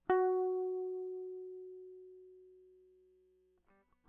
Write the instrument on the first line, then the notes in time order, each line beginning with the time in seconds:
electric guitar
0.10 F#4